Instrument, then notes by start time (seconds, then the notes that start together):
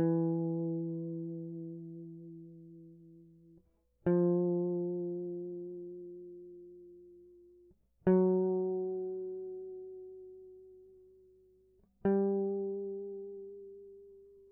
electric guitar
0.00 E3
4.06 F3
8.06 F#3
12.06 G3